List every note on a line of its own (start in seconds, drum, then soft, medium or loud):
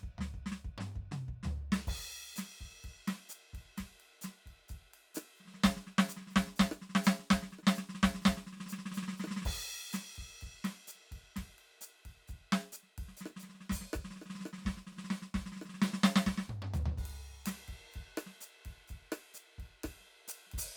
0.03 kick soft
0.19 snare medium
0.19 floor tom medium
0.34 kick soft
0.46 snare medium
0.52 snare medium
0.65 kick soft
0.78 snare medium
0.78 mid tom medium
0.96 kick soft
1.12 snare medium
1.12 high tom medium
1.28 kick soft
1.34 kick soft
1.43 snare medium
1.43 floor tom medium
1.72 snare loud
1.88 kick medium
1.88 crash medium
2.36 snare medium
2.36 hi-hat pedal medium
2.36 ride medium
2.60 kick soft
2.60 ride soft
2.71 snare soft
2.76 snare soft
2.82 kick soft
2.82 hi-hat pedal soft
2.82 ride soft
3.08 snare medium
3.08 ride medium
3.29 hi-hat pedal medium
3.29 ride soft
3.54 kick soft
3.54 ride soft
3.59 kick soft
3.77 kick soft
3.77 snare medium
3.77 hi-hat pedal soft
3.77 ride medium
3.85 kick soft
4.00 ride soft
4.22 snare medium
4.22 hi-hat pedal medium
4.22 ride medium
4.46 kick soft
4.46 ride soft
4.51 kick soft
4.69 kick soft
4.69 hi-hat pedal soft
4.69 ride medium
4.94 ride medium
5.15 cross-stick medium
5.15 hi-hat pedal loud
5.15 ride medium
5.36 hi-hat pedal soft
5.40 snare soft
5.45 snare soft
5.48 snare soft
5.54 snare soft
5.60 snare soft
5.60 hi-hat pedal medium
5.64 kick soft
5.64 snare loud
5.77 snare soft
5.87 snare soft
5.99 snare loud
6.09 snare soft
6.09 hi-hat pedal medium
6.17 snare soft
6.22 snare soft
6.27 snare soft
6.27 hi-hat pedal soft
6.32 snare soft
6.36 kick soft
6.36 snare loud
6.47 snare soft
6.56 kick soft
6.56 snare loud
6.56 hi-hat pedal soft
6.65 kick soft
6.72 cross-stick medium
6.82 snare soft
6.90 snare soft
6.95 snare loud
7.04 snare loud
7.04 hi-hat pedal medium
7.20 snare soft
7.31 kick soft
7.31 snare loud
7.43 snare medium
7.50 snare soft
7.50 hi-hat pedal soft
7.59 cross-stick soft
7.63 snare soft
7.67 snare loud
7.75 snare medium
7.75 hi-hat pedal medium
7.89 snare medium
7.95 snare medium
8.03 kick soft
8.03 snare loud
8.12 kick soft
8.12 snare medium
8.22 snare soft
8.22 hi-hat pedal soft
8.26 kick soft
8.26 snare loud
8.37 snare medium
8.47 snare soft
8.53 snare soft
8.60 snare medium
8.66 snare soft
8.66 hi-hat pedal medium
8.73 snare medium
8.79 snare medium
8.86 snare medium
8.92 snare medium
8.92 hi-hat pedal medium
8.98 snare medium
9.03 snare medium
9.08 snare medium
9.13 snare medium
9.18 snare medium
9.18 hi-hat pedal soft
9.24 cross-stick medium
9.24 snare medium
9.31 snare medium
9.37 snare medium
9.42 kick medium
9.42 snare medium
9.42 hi-hat pedal soft
9.42 crash loud
9.59 kick soft
9.93 snare medium
9.93 hi-hat pedal medium
9.93 ride medium
10.14 hi-hat pedal soft
10.14 ride soft
10.18 kick soft
10.26 snare soft
10.41 kick soft
10.41 hi-hat pedal soft
10.41 ride soft
10.48 kick soft
10.65 snare medium
10.65 ride medium
10.88 hi-hat pedal medium
10.88 ride soft
10.95 snare soft
11.12 kick soft
11.12 ride soft
11.17 kick soft
11.36 kick soft
11.36 snare medium
11.36 hi-hat pedal soft
11.36 ride medium
11.43 kick soft
11.59 ride soft
11.81 hi-hat pedal medium
11.81 ride medium
12.06 kick soft
12.06 ride soft
12.11 kick soft
12.28 kick soft
12.28 hi-hat pedal soft
12.28 ride soft
12.35 kick soft
12.53 snare loud
12.53 ride medium
12.73 hi-hat pedal medium
12.73 ride soft
12.83 snare soft
12.98 kick soft
12.98 ride medium
13.04 kick soft
13.09 snare soft
13.17 snare soft
13.17 hi-hat pedal medium
13.26 cross-stick medium
13.30 cross-stick soft
13.37 snare soft
13.37 hi-hat pedal medium
13.44 snare soft
13.50 snare soft
13.55 snare soft
13.61 snare soft
13.70 kick soft
13.70 snare medium
13.70 hi-hat pedal medium
13.79 kick soft
13.79 snare soft
13.94 kick soft
13.94 cross-stick medium
14.05 snare soft
14.11 snare soft
14.16 snare soft
14.22 cross-stick soft
14.26 snare soft
14.30 snare medium
14.35 snare medium
14.39 snare soft
14.41 snare medium
14.46 cross-stick medium
14.49 cross-stick soft
14.53 snare soft
14.58 snare soft
14.62 kick soft
14.62 snare soft
14.67 snare medium
14.77 kick soft
14.77 snare soft
14.87 snare soft
14.92 snare soft
14.97 snare soft
14.99 snare medium
15.05 snare medium
15.11 snare medium
15.22 snare soft
15.35 kick soft
15.35 snare medium
15.41 kick soft
15.46 snare medium
15.52 snare soft
15.57 snare soft
15.62 cross-stick medium
15.62 snare soft
15.69 snare soft
15.74 snare soft
15.79 snare soft
15.82 snare loud
15.94 snare medium
16.04 snare loud
16.16 snare loud
16.27 kick soft
16.27 snare loud
16.27 hi-hat pedal soft
16.38 snare medium
16.49 kick soft
16.49 mid tom medium
16.63 mid tom medium
16.74 floor tom loud
16.74 hi-hat pedal soft
16.86 floor tom loud
16.98 kick soft
16.98 hi-hat pedal soft
16.98 crash soft
17.04 kick soft
17.04 crash medium
17.10 crash soft
17.46 snare medium
17.46 hi-hat pedal medium
17.46 ride loud
17.69 kick soft
17.69 ride soft
17.84 snare soft
17.92 hi-hat pedal soft
17.92 ride soft
17.96 kick soft
18.18 cross-stick medium
18.18 ride medium
18.27 snare soft
18.41 hi-hat pedal medium
18.41 ride soft
18.65 kick soft
18.65 ride medium
18.71 kick soft
18.88 kick soft
18.88 hi-hat pedal soft
18.88 ride soft
18.96 kick soft
19.12 cross-stick medium
19.12 ride medium
19.34 hi-hat pedal medium
19.59 kick soft
19.59 ride soft
19.84 kick soft
19.84 cross-stick medium
19.84 ride medium
20.01 snare soft
20.28 hi-hat pedal loud
20.28 ride medium
20.47 snare soft
20.52 kick soft
20.52 ride medium
20.58 hi-hat pedal loud